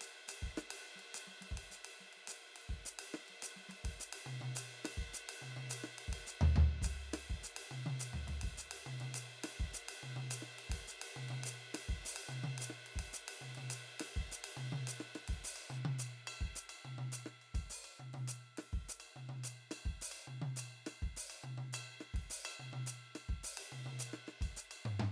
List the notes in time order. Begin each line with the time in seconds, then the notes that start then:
0.01 hi-hat pedal, ride
0.28 hi-hat pedal, ride
0.42 kick
0.57 cross-stick, hi-hat pedal
0.71 ride
0.96 snare, ride
1.14 hi-hat pedal, ride
1.27 snare
1.41 snare, ride
1.51 kick
1.57 ride
1.70 snare, hi-hat pedal
1.85 ride
2.00 snare
2.13 snare, ride
2.28 hi-hat pedal, ride
2.56 ride
2.69 kick
2.85 hi-hat pedal
2.99 ride
3.14 cross-stick
3.28 snare, ride
3.42 hi-hat pedal, ride
3.56 snare
3.69 snare, ride
3.84 kick, ride
4.00 hi-hat pedal
4.13 ride
4.26 high tom
4.41 high tom
4.55 hi-hat pedal, ride
4.85 cross-stick, ride
4.97 kick
5.14 hi-hat pedal
5.29 ride
5.42 high tom
5.57 high tom
5.70 hi-hat pedal, ride
5.84 cross-stick
5.98 ride
6.08 kick
6.13 ride
6.27 hi-hat pedal
6.41 floor tom
6.56 floor tom
6.82 kick, hi-hat pedal, ride
7.13 cross-stick, ride
7.30 kick
7.43 hi-hat pedal
7.57 ride
7.71 high tom
7.86 high tom
8.00 hi-hat pedal, ride
8.13 floor tom
8.27 floor tom, ride
8.41 kick, ride
8.58 hi-hat pedal
8.71 ride
8.86 high tom
9.00 high tom, ride
9.14 hi-hat pedal, ride
9.44 cross-stick, ride
9.60 kick
9.74 hi-hat pedal
9.89 ride
10.03 high tom
10.16 high tom
10.31 hi-hat pedal, ride
10.42 cross-stick
10.59 ride
10.70 kick, ride
10.88 hi-hat pedal
11.02 ride
11.16 high tom
11.29 high tom, ride
11.44 hi-hat pedal, ride
11.74 cross-stick, ride
11.89 kick
12.05 hi-hat pedal
12.16 ride
12.29 high tom
12.44 high tom
12.58 hi-hat pedal, ride
12.70 cross-stick
12.86 ride
12.96 kick, ride
13.13 hi-hat pedal
13.28 ride
13.41 high tom
13.55 high tom, ride
13.70 hi-hat pedal, ride
14.00 cross-stick, ride
14.16 kick
14.32 hi-hat pedal
14.44 ride
14.57 high tom
14.72 high tom
14.87 hi-hat pedal, ride
15.00 cross-stick
15.15 cross-stick, ride
15.28 kick, ride
15.44 hi-hat pedal
15.56 ride bell
15.70 high tom
15.85 high tom
15.99 hi-hat pedal, ride bell
16.27 ride bell
16.41 kick
16.54 kick, hi-hat pedal
16.69 ride bell
16.85 high tom
16.98 high tom
17.12 hi-hat pedal, ride bell
17.26 cross-stick
17.42 ride bell
17.54 kick, ride bell
17.70 hi-hat pedal
17.84 ride bell
18.00 high tom
18.13 high tom, ride
18.28 hi-hat pedal, ride bell
18.57 cross-stick, ride
18.73 kick
18.89 hi-hat pedal
19.00 ride bell
19.16 high tom
19.29 high tom
19.44 hi-hat pedal, ride bell
19.71 cross-stick, ride bell
19.85 kick
20.01 hi-hat pedal
20.12 ride bell
20.27 high tom
20.42 high tom
20.56 hi-hat pedal, ride bell
20.86 cross-stick, ride bell
21.02 kick
21.17 hi-hat pedal
21.30 ride bell
21.44 high tom
21.58 high tom
21.73 hi-hat pedal, ride bell
22.01 cross-stick, ride bell
22.14 kick, ride
22.30 hi-hat pedal
22.45 ride bell
22.60 high tom
22.73 high tom
22.86 hi-hat pedal, ride bell
23.15 cross-stick, ride bell
23.29 kick
23.44 hi-hat pedal
23.57 ride
23.72 high tom
23.86 high tom
23.99 hi-hat pedal, ride bell
24.13 cross-stick
24.27 cross-stick, ride bell
24.41 kick, ride bell
24.57 hi-hat pedal
24.71 ride bell
24.85 mid tom
25.00 mid tom